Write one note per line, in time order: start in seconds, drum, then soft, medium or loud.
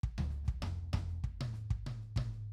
0.03 kick medium
0.18 floor tom medium
0.30 snare soft
0.44 kick soft
0.44 snare soft
0.62 mid tom medium
0.93 kick soft
0.93 mid tom medium
1.08 snare soft
1.24 kick soft
1.41 high tom medium
1.53 snare soft
1.71 kick medium
1.86 high tom medium
2.01 snare soft
2.16 kick soft
2.16 high tom medium
2.32 snare soft